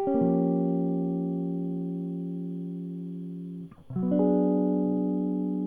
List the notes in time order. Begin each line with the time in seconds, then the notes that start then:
0.00 G4
0.08 C#4
0.15 A#3
0.22 F3
3.97 F#3
4.03 B3
4.12 D4
4.20 G#4